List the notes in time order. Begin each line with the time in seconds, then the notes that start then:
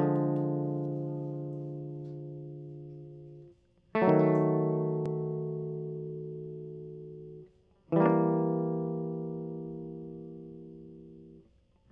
0.00 D3 F3 G#3
3.96 A3
4.03 F#3
4.09 D#3
7.94 E3 G3
8.01 A#3
8.07 D4